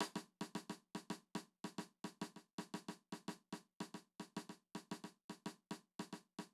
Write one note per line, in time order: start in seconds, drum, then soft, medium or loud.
0.01 cross-stick medium
0.16 cross-stick medium
0.41 cross-stick medium
0.55 cross-stick medium
0.70 cross-stick medium
0.95 cross-stick medium
1.10 cross-stick medium
1.35 cross-stick medium
1.64 cross-stick medium
1.78 cross-stick medium
2.04 cross-stick medium
2.21 cross-stick medium
2.36 cross-stick soft
2.58 cross-stick medium
2.74 cross-stick medium
2.89 cross-stick medium
3.12 cross-stick medium
3.28 cross-stick medium
3.53 cross-stick medium
3.80 cross-stick medium
3.94 cross-stick soft
4.20 cross-stick medium
4.37 cross-stick medium
4.49 cross-stick soft
4.75 cross-stick medium
4.91 cross-stick medium
5.04 cross-stick soft
5.30 cross-stick soft
5.46 cross-stick medium
5.71 cross-stick medium
5.99 cross-stick medium
6.13 cross-stick medium
6.39 cross-stick medium